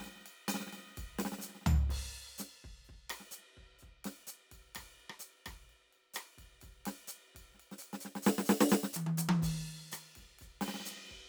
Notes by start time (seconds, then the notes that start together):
0.01 snare, ride
0.06 snare
0.12 snare
0.16 snare
0.21 snare
0.26 snare, ride
0.49 snare, hi-hat pedal, ride bell
0.55 snare
0.61 snare
0.67 snare
0.73 snare, ride
0.78 snare
0.83 snare
0.87 snare
0.91 snare
0.96 kick, snare, hi-hat pedal, ride
1.04 kick
1.19 snare, ride
1.26 snare
1.33 snare
1.39 snare, hi-hat pedal
1.44 snare, ride
1.50 snare
1.56 snare
1.62 snare
1.67 kick, floor tom
1.90 kick, crash
1.96 kick
2.39 snare, hi-hat pedal
2.65 kick
2.85 hi-hat pedal
2.90 kick
2.95 kick
3.10 cross-stick, ride
3.21 snare
3.32 hi-hat pedal
3.39 snare
3.58 kick
3.63 kick
3.79 kick, hi-hat pedal
3.88 kick
4.05 snare, ride
4.28 snare, hi-hat pedal, ride
4.52 kick, ride
4.75 kick, cross-stick, hi-hat pedal, ride
4.82 kick
5.00 ride
5.10 cross-stick
5.20 hi-hat pedal, ride
5.47 kick, cross-stick, ride
5.52 kick
5.70 ride
5.93 ride
6.14 cross-stick, hi-hat pedal, ride
6.38 kick, ride
6.44 kick
6.61 kick, hi-hat pedal, ride
6.69 kick
6.86 snare, ride
7.08 hi-hat pedal, ride
7.17 snare
7.36 kick, ride
7.41 kick
7.55 snare
7.60 ride
7.72 snare
7.79 hi-hat pedal, ride
7.94 snare
8.01 hi-hat pedal
8.06 snare
8.16 snare
8.23 hi-hat pedal
8.27 snare
8.39 snare
8.46 hi-hat pedal
8.50 snare
8.61 snare
8.69 snare, hi-hat pedal
8.84 snare
8.94 hi-hat pedal, high tom
9.07 high tom
9.18 kick, hi-hat pedal, high tom
9.30 high tom
9.42 kick, hi-hat pedal, high tom, crash
9.49 kick
9.92 cross-stick, hi-hat pedal, ride
10.16 kick, snare, ride
10.22 kick, snare
10.27 snare
10.30 snare
10.39 kick, hi-hat pedal, ride
10.47 kick
10.62 snare, ride
10.67 snare, ride
10.75 snare
10.81 snare
10.86 snare, hi-hat pedal
10.92 snare
10.97 snare
11.02 snare
11.06 snare
11.10 kick, snare
11.13 snare
11.16 snare
11.19 snare